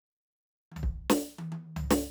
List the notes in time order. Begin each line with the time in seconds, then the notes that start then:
0.72 high tom
0.76 floor tom
0.83 kick
1.10 snare
1.38 high tom
1.52 high tom
1.76 floor tom
1.91 snare